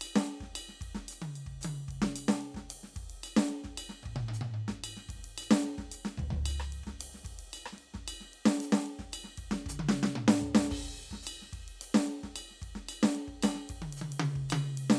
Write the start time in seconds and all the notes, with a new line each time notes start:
0.01 hi-hat pedal, ride bell
0.16 snare
0.27 ride
0.40 kick, snare
0.55 hi-hat pedal, ride bell
0.69 snare
0.81 kick, ride
0.87 kick
0.95 snare
1.08 hi-hat pedal, ride bell
1.22 high tom
1.35 ride bell
1.46 kick
1.52 kick
1.61 hi-hat pedal, high tom, ride bell
1.88 kick, ride
1.94 kick
2.02 snare
2.16 hi-hat pedal, ride bell
2.28 snare
2.41 ride
2.54 kick, snare
2.69 hi-hat pedal, ride
2.83 snare
2.93 kick, snare, ride
3.03 kick
3.10 ride
3.23 hi-hat pedal, ride bell
3.36 snare
3.49 ride
3.64 kick, snare
3.69 kick
3.77 hi-hat pedal, ride bell
3.89 snare
4.03 kick, mid tom
4.16 mid tom
4.28 mid tom
4.33 hi-hat pedal
4.41 mid tom
4.54 mid tom
4.68 kick, snare
4.84 hi-hat pedal, ride bell
4.97 snare
5.09 kick, snare, ride
5.15 kick, snare
5.19 snare
5.24 snare, ride
5.38 hi-hat pedal, ride bell
5.51 snare
5.63 ride
5.78 kick, snare
5.83 kick
5.91 hi-hat pedal, ride bell
6.05 snare
6.17 kick, floor tom
6.25 kick
6.30 floor tom
6.46 hi-hat pedal, ride bell
6.60 cross-stick
6.72 ride
6.83 kick, snare
7.00 hi-hat pedal, ride
7.14 snare
7.23 kick, snare, ride
7.39 ride
7.53 hi-hat pedal, ride bell
7.66 cross-stick
7.72 snare
7.78 ride
7.94 kick, snare
8.08 hi-hat pedal, ride bell
8.20 snare
8.33 ride
8.45 snare
8.60 hi-hat pedal, ride
8.72 snare
8.86 ride
8.99 kick, snare
9.12 hi-hat pedal, ride bell
9.24 snare
9.37 kick, ride
9.51 snare
9.66 kick, hi-hat pedal
9.70 high tom
9.79 high tom
9.89 snare
10.03 snare
10.15 mid tom
10.28 snare
10.41 floor tom
10.55 snare
10.63 snare
10.70 kick, cross-stick, crash
10.84 kick
11.11 kick, snare
11.23 hi-hat pedal
11.27 ride bell
11.42 snare
11.53 kick, snare, ride
11.57 kick, snare
11.61 snare
11.68 ride
11.81 hi-hat pedal, ride
11.94 snare
12.07 ride
12.23 kick, snare
12.28 kick
12.36 hi-hat pedal, ride bell
12.50 snare
12.61 kick, ride
12.68 kick
12.75 snare
12.89 hi-hat pedal, ride bell
13.03 snare
13.15 ride
13.27 kick
13.42 snare, hi-hat pedal, ride bell
13.55 snare
13.69 kick, ride
13.75 kick
13.82 high tom
13.93 ride
13.97 hi-hat pedal
14.01 high tom
14.12 ride
14.20 high tom
14.35 kick
14.49 hi-hat pedal, high tom, ride bell
14.77 ride
14.90 snare